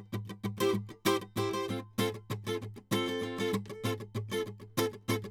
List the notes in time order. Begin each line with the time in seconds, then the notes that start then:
0.62 E4 G4 C5
1.07 E4 G4 C5
1.38 E4 G4 C5
1.55 E4 G4 C5
1.71 C4 F4 A4
2.00 C4 F4 A4
2.49 C4 F4 A4
2.93 C4 F4 A4
3.08 F4 A4
3.23 C4 F4 A4
3.42 C4 F4 A4
3.72 A4
3.85 C4 F4 A4
4.34 C4 F4 A4
4.79 C4 F4 A4
5.10 C4 F4 A4